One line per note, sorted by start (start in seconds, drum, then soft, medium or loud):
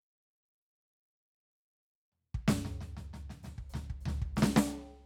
2.12 mid tom soft
2.34 kick soft
2.48 snare loud
2.48 hi-hat pedal medium
2.48 floor tom medium
2.65 snare soft
2.65 floor tom medium
2.81 snare soft
2.81 floor tom soft
2.97 snare soft
2.97 floor tom soft
3.13 snare soft
3.13 floor tom soft
3.30 snare soft
3.30 floor tom soft
3.43 snare soft
3.43 floor tom soft
3.43 hi-hat pedal soft
3.58 kick soft
3.70 hi-hat pedal soft
3.74 snare soft
3.74 floor tom medium
3.90 kick soft
4.01 hi-hat pedal soft
4.06 snare soft
4.06 floor tom medium
4.22 kick soft
4.36 snare medium
4.36 hi-hat pedal soft
4.42 snare loud
4.56 snare loud
4.69 hi-hat pedal soft